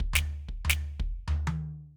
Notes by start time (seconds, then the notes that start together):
0.00 kick
0.13 snare, floor tom
0.48 kick
0.65 floor tom
0.70 snare
1.00 kick
1.28 floor tom
1.47 high tom